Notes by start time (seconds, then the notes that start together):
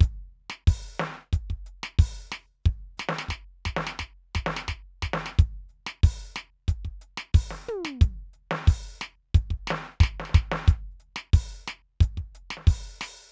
0.01 closed hi-hat, kick
0.50 snare
0.68 open hi-hat, kick
1.00 closed hi-hat, snare, hi-hat pedal
1.33 closed hi-hat, kick
1.50 kick
1.66 closed hi-hat
1.83 snare
1.99 open hi-hat, kick
2.32 snare
2.63 kick, hi-hat pedal
2.98 kick, snare, hi-hat pedal
3.09 snare
3.19 snare
3.29 kick, snare
3.66 kick, snare
3.77 snare
3.87 snare
3.99 kick, snare, hi-hat pedal
4.34 kick, snare, hi-hat pedal
4.47 snare
4.57 snare
4.68 kick, snare
5.03 kick, snare
5.14 snare
5.26 snare
5.39 closed hi-hat, kick
5.69 hi-hat pedal
5.87 snare
6.04 open hi-hat, kick
6.35 snare, hi-hat pedal
6.68 closed hi-hat, kick
6.85 kick
7.02 closed hi-hat
7.18 snare
7.34 kick, open hi-hat
7.51 snare
7.67 hi-hat pedal, mid tom
7.85 snare
8.01 closed hi-hat, kick
8.34 closed hi-hat
8.51 snare
8.68 open hi-hat, kick
9.01 closed hi-hat, snare, hi-hat pedal
9.35 closed hi-hat, kick
9.51 kick
9.68 snare, hi-hat pedal
9.71 snare
10.01 kick, snare, hi-hat pedal
10.04 snare
10.20 snare
10.25 snare
10.30 snare, hi-hat pedal
10.35 kick, snare
10.52 snare
10.68 closed hi-hat, kick
10.91 hi-hat pedal
11.00 closed hi-hat
11.16 snare
11.34 open hi-hat, kick
11.66 closed hi-hat, snare, hi-hat pedal
12.01 closed hi-hat, kick
12.18 kick
12.35 closed hi-hat
12.51 snare
12.57 snare
12.67 open hi-hat, kick
12.85 kick
13.01 open hi-hat, snare